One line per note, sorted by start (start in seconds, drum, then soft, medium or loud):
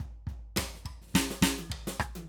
0.00 kick soft
0.00 floor tom medium
0.27 kick medium
0.27 floor tom soft
0.56 kick medium
0.56 snare loud
0.56 floor tom loud
0.75 snare soft
0.85 kick soft
0.85 floor tom medium
1.01 snare soft
1.07 snare soft
1.11 kick soft
1.11 snare soft
1.15 snare loud
1.30 snare medium
1.41 kick medium
1.41 snare loud
1.58 high tom loud
1.70 kick soft
1.70 mid tom loud
1.87 snare loud
1.99 kick medium
1.99 cross-stick medium
2.15 high tom loud